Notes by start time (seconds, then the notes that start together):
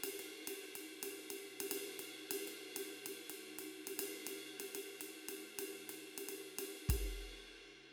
0.04 ride
0.20 ride
0.48 ride
0.76 ride
1.03 ride
1.31 ride
1.61 ride
1.72 ride
2.00 ride
2.31 ride
2.48 ride
2.77 ride
3.06 ride
3.30 ride
3.59 ride
3.87 ride
4.00 ride
4.27 ride
4.60 ride
4.75 ride
5.01 ride
5.29 ride
5.59 ride
5.90 ride
6.18 ride
6.29 ride
6.59 ride
6.89 kick, ride